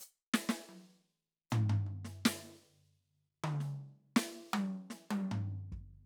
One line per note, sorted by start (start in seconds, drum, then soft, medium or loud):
0.00 hi-hat pedal medium
0.34 snare loud
0.49 snare medium
0.69 high tom soft
1.50 floor tom loud
1.50 hi-hat pedal soft
1.69 floor tom loud
1.86 floor tom soft
2.04 snare soft
2.25 snare loud
3.44 mid tom loud
3.60 snare soft
4.16 snare loud
4.50 hi-hat pedal soft
4.50 high tom loud
4.90 snare medium
5.11 high tom loud
5.31 floor tom loud
5.72 kick soft